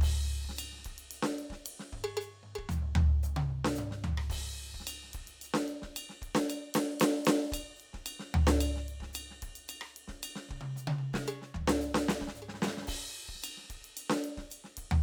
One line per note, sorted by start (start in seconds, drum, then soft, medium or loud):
0.01 kick medium
0.01 hi-hat pedal medium
0.01 crash loud
0.11 cross-stick soft
0.44 kick soft
0.49 snare soft
0.56 hi-hat pedal medium
0.56 ride bell loud
0.72 snare soft
0.78 snare soft
0.85 kick soft
0.85 ride medium
0.91 snare soft
0.98 ride medium
1.11 hi-hat pedal medium
1.11 ride medium
1.23 snare medium
1.39 ride medium
1.50 kick soft
1.50 snare soft
1.65 hi-hat pedal medium
1.65 ride loud
1.79 snare soft
1.93 kick soft
1.93 mid tom medium
2.04 percussion loud
2.17 hi-hat pedal medium
2.17 percussion loud
2.43 mid tom medium
2.55 kick soft
2.55 percussion medium
2.69 floor tom loud
2.69 hi-hat pedal medium
2.82 mid tom soft
2.95 floor tom loud
3.07 mid tom soft
3.23 hi-hat pedal medium
3.23 mid tom medium
3.36 high tom loud
3.50 mid tom soft
3.65 snare medium
3.75 hi-hat pedal medium
3.75 mid tom loud
3.91 snare soft
4.04 floor tom loud
4.18 cross-stick medium
4.30 kick soft
4.30 hi-hat pedal medium
4.30 crash loud
4.44 kick soft
4.74 kick soft
4.80 snare soft
4.87 hi-hat pedal loud
4.87 ride bell loud
5.04 snare soft
5.08 snare soft
5.13 kick soft
5.13 ride medium
5.21 kick soft
5.26 snare soft
5.26 ride medium
5.42 hi-hat pedal medium
5.42 ride bell medium
5.54 snare loud
5.68 ride soft
5.82 kick soft
5.82 snare soft
5.96 hi-hat pedal medium
5.96 ride bell loud
6.09 snare soft
6.22 kick soft
6.22 ride medium
6.35 snare loud
6.49 hi-hat pedal medium
6.49 ride bell loud
6.74 snare loud
6.74 ride loud
7.00 snare loud
7.00 hi-hat pedal medium
7.00 ride loud
7.25 snare loud
7.25 hi-hat pedal medium
7.25 ride medium
7.52 kick medium
7.52 snare soft
7.52 hi-hat pedal medium
7.52 ride bell loud
7.64 kick soft
7.76 hi-hat pedal soft
7.76 ride soft
7.93 kick soft
7.93 snare soft
8.06 hi-hat pedal medium
8.06 ride bell loud
8.19 snare medium
8.34 floor tom loud
8.47 snare loud
8.60 hi-hat pedal medium
8.60 ride bell loud
8.76 snare soft
8.88 ride medium
9.00 kick soft
9.00 snare soft
9.09 snare soft
9.13 hi-hat pedal medium
9.13 ride bell loud
9.31 snare soft
9.42 kick soft
9.42 ride medium
9.49 kick soft
9.55 ride bell medium
9.68 hi-hat pedal medium
9.68 ride bell loud
9.81 cross-stick medium
9.96 ride medium
10.08 kick soft
10.08 snare soft
10.14 kick soft
10.22 hi-hat pedal medium
10.22 ride bell loud
10.35 snare medium
10.49 kick soft
10.49 high tom medium
10.57 kick soft
10.61 high tom loud
10.76 hi-hat pedal medium
10.76 high tom medium
10.87 high tom loud
10.99 high tom soft
11.13 kick soft
11.13 snare medium
11.27 hi-hat pedal medium
11.27 percussion loud
11.42 snare soft
11.54 kick soft
11.54 floor tom medium
11.68 snare loud
11.81 hi-hat pedal medium
11.95 snare loud
12.08 snare loud
12.21 kick soft
12.21 snare soft
12.27 snare medium
12.35 hi-hat pedal medium
12.35 mid tom medium
12.42 percussion soft
12.48 snare soft
12.54 snare soft
12.62 snare loud
12.67 snare medium
12.73 cross-stick soft
12.77 snare medium
12.82 snare soft
12.87 kick medium
12.87 hi-hat pedal medium
12.87 crash loud
13.02 kick soft
13.29 kick soft
13.34 snare soft
13.42 hi-hat pedal medium
13.42 ride bell loud
13.57 snare soft
13.64 snare soft
13.70 kick soft
13.70 ride medium
13.75 kick soft
13.84 ride medium
13.97 hi-hat pedal medium
13.97 ride bell medium
14.10 snare loud
14.16 snare soft
14.24 ride medium
14.37 kick soft
14.37 snare soft
14.50 hi-hat pedal medium
14.50 ride bell medium
14.64 snare soft
14.77 kick soft
14.77 ride medium
14.91 floor tom loud